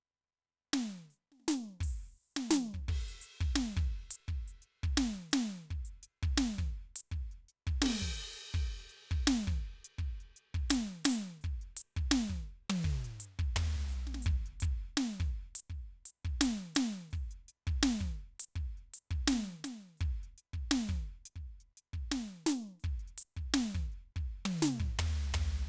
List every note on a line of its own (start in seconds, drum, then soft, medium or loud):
0.73 snare loud
1.10 hi-hat pedal medium
1.32 snare soft
1.39 snare soft
1.48 snare medium
1.80 open hi-hat medium
1.80 kick soft
2.36 snare medium
2.50 snare loud
2.50 hi-hat pedal medium
2.74 kick soft
2.88 kick soft
2.88 crash soft
3.08 closed hi-hat medium
3.21 closed hi-hat medium
3.40 kick medium
3.55 snare loud
3.76 kick medium
4.10 closed hi-hat loud
4.28 kick soft
4.47 closed hi-hat medium
4.62 closed hi-hat medium
4.83 kick medium
4.97 snare loud
5.31 snare loud
5.31 hi-hat pedal medium
5.54 closed hi-hat soft
5.70 kick soft
5.85 closed hi-hat medium
6.03 closed hi-hat loud
6.22 kick medium
6.37 snare loud
6.58 kick soft
6.96 closed hi-hat loud
7.11 kick soft
7.31 closed hi-hat soft
7.48 closed hi-hat medium
7.67 kick medium
7.82 snare loud
7.82 crash medium
7.86 snare medium
8.01 kick soft
8.15 hi-hat pedal medium
8.39 closed hi-hat medium
8.46 closed hi-hat medium
8.53 kick medium
8.53 closed hi-hat medium
8.74 closed hi-hat soft
8.89 closed hi-hat medium
9.11 kick medium
9.27 snare loud
9.47 kick medium
9.84 closed hi-hat loud
9.98 kick soft
10.20 closed hi-hat soft
10.36 closed hi-hat medium
10.54 kick soft
10.70 open hi-hat loud
10.70 snare loud
11.04 open hi-hat loud
11.04 snare loud
11.41 kick soft
11.41 hi-hat pedal medium
11.61 closed hi-hat soft
11.76 closed hi-hat loud
11.96 kick soft
12.11 snare loud
12.29 kick soft
12.69 high tom loud
12.84 kick soft
13.04 closed hi-hat medium
13.20 closed hi-hat loud
13.39 kick medium
13.56 floor tom loud
13.75 kick soft
13.88 hi-hat pedal loud
14.07 snare soft
14.14 snare soft
14.22 closed hi-hat medium
14.22 kick medium
14.46 closed hi-hat medium
14.60 closed hi-hat loud
14.60 kick medium
14.97 snare loud
15.20 kick medium
15.55 closed hi-hat loud
15.69 kick soft
16.05 closed hi-hat loud
16.24 kick soft
16.41 open hi-hat loud
16.41 snare loud
16.75 open hi-hat loud
16.75 snare loud
17.10 kick soft
17.10 hi-hat pedal medium
17.31 closed hi-hat medium
17.48 closed hi-hat medium
17.67 kick medium
17.83 snare loud
18.00 kick soft
18.39 closed hi-hat loud
18.55 kick soft
18.77 closed hi-hat soft
18.93 closed hi-hat loud
19.10 kick soft
19.27 open hi-hat medium
19.27 snare loud
19.32 snare soft
19.64 open hi-hat medium
19.64 snare medium
19.97 kick medium
19.97 hi-hat pedal soft
20.23 closed hi-hat soft
20.37 closed hi-hat medium
20.53 kick soft
20.71 snare loud
20.89 kick soft
21.25 closed hi-hat loud
21.35 kick soft
21.60 closed hi-hat soft
21.77 closed hi-hat medium
21.93 kick soft
22.11 snare medium
22.11 open hi-hat loud
22.46 snare medium
22.46 open hi-hat medium
22.79 hi-hat pedal medium
22.84 kick soft
22.99 closed hi-hat soft
23.07 closed hi-hat soft
23.18 closed hi-hat loud
23.36 kick soft
23.54 snare loud
23.74 kick soft
23.92 closed hi-hat soft
24.16 kick soft
24.45 high tom loud
24.62 snare loud
24.79 kick soft
24.99 floor tom loud
25.33 floor tom loud
25.33 hi-hat pedal medium